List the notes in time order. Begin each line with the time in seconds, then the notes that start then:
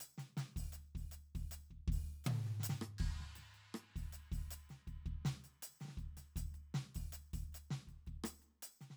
0.01 percussion
0.18 snare, percussion
0.38 snare, percussion
0.57 kick, percussion
0.73 snare, percussion
0.96 kick, percussion
1.12 percussion
1.36 kick, percussion
1.52 snare, percussion
1.71 kick
1.88 kick
1.93 percussion
2.06 snare
2.10 snare
2.25 high tom, percussion
2.47 snare
2.60 snare, percussion
2.70 snare
2.82 cross-stick
2.99 kick, crash
3.21 snare
3.36 snare, percussion
3.55 percussion
3.75 cross-stick, percussion
3.96 kick, percussion
4.13 snare, percussion
4.32 kick, percussion
4.51 percussion
4.70 snare, percussion
4.88 kick, percussion
5.06 kick, percussion
5.26 snare, percussion
5.45 percussion
5.63 percussion
5.81 snare, percussion
5.86 snare
5.89 snare
5.98 kick, percussion
6.18 snare, percussion
6.37 kick, percussion
6.55 percussion
6.75 snare, percussion
6.95 kick, percussion
7.13 percussion
7.34 kick, percussion
7.53 percussion
7.55 percussion
7.71 snare, percussion
7.88 kick, percussion
8.07 kick, percussion
8.24 cross-stick, percussion
8.43 percussion
8.63 percussion
8.81 snare, percussion
8.91 snare